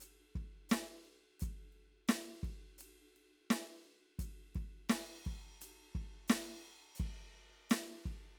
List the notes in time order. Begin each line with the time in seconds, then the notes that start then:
0.01 hi-hat pedal, ride
0.36 kick, ride
0.70 snare, hi-hat pedal, ride
1.06 ride
1.40 kick, hi-hat pedal, ride
1.73 ride
2.08 snare, hi-hat pedal, ride
2.44 kick, ride
2.79 hi-hat pedal, ride
3.17 ride
3.51 snare, hi-hat pedal, ride
3.85 ride
4.19 kick, hi-hat pedal, ride
4.55 kick, ride
4.90 snare, hi-hat pedal, crash
5.26 kick, ride
5.61 hi-hat pedal, ride
5.95 kick, ride
6.28 snare, hi-hat pedal, crash
6.63 ride
6.96 hi-hat pedal, crash
7.00 kick
7.70 snare, hi-hat pedal, ride
8.06 kick, ride